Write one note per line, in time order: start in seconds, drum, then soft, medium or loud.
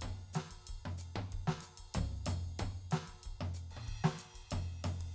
0.01 kick soft
0.01 mid tom medium
0.01 ride bell medium
0.33 snare medium
0.33 hi-hat pedal medium
0.33 ride medium
0.50 kick soft
0.50 ride bell soft
0.67 kick soft
0.67 ride bell medium
0.85 floor tom medium
0.98 hi-hat pedal medium
0.98 ride medium
1.15 kick soft
1.15 mid tom loud
1.32 kick soft
1.32 ride medium
1.47 snare medium
1.60 hi-hat pedal medium
1.60 ride medium
1.77 kick soft
1.77 ride bell medium
1.94 kick soft
1.94 ride bell medium
1.94 floor tom loud
2.26 floor tom loud
2.26 hi-hat pedal medium
2.26 ride bell medium
2.44 kick soft
2.59 kick soft
2.59 mid tom loud
2.59 ride bell medium
2.91 snare loud
2.91 hi-hat pedal medium
2.91 ride medium
3.07 kick soft
3.07 ride bell soft
3.23 kick soft
3.23 ride bell soft
3.40 floor tom medium
3.54 hi-hat pedal medium
3.54 ride medium
3.69 kick soft
3.69 ride medium
3.76 mid tom medium
3.87 kick soft
3.87 ride soft
4.04 snare loud
4.18 hi-hat pedal medium
4.18 ride medium
4.34 kick soft
4.34 ride bell soft
4.51 kick soft
4.51 floor tom medium
4.51 ride bell medium
4.84 floor tom medium
4.84 hi-hat pedal medium
4.84 ride loud
4.98 kick soft
4.98 ride medium